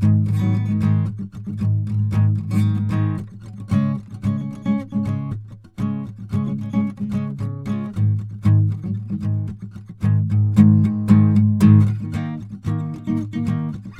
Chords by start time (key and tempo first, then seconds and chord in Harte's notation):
G# major, 114 BPM
0.00 G#:maj
3.70 C#:(1,5)
7.91 G#:(1,5)
12.12 D#:(1,5)